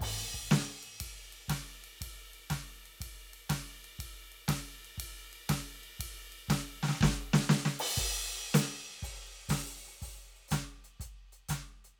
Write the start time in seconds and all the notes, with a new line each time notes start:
0.01 kick, crash
0.34 kick
0.51 snare, ride
0.83 ride
1.00 kick, ride
1.33 ride
1.49 kick, snare, ride
1.84 ride
2.01 kick, ride
2.34 ride
2.50 kick, snare, ride
2.86 ride
3.01 kick, ride
3.34 ride
3.50 kick, snare, ride
3.85 ride
3.99 kick, ride
4.32 ride
4.48 kick, snare, ride
4.85 ride
4.98 kick, ride
5.33 ride
5.49 kick, snare, ride
5.84 ride
6.00 kick, ride
6.32 ride
6.49 kick, snare, ride
6.83 snare
6.89 snare
6.94 snare
7.01 kick, snare
7.34 snare
7.49 snare
7.65 snare
7.79 crash
7.98 kick, crash
8.54 open hi-hat, snare
9.03 open hi-hat, kick
9.36 open hi-hat
9.49 open hi-hat, kick, snare
9.87 open hi-hat
10.02 open hi-hat, kick
10.37 open hi-hat
10.48 closed hi-hat, kick, snare, hi-hat pedal
10.84 closed hi-hat
11.00 closed hi-hat, kick
11.32 closed hi-hat
11.49 closed hi-hat, kick, snare
11.84 closed hi-hat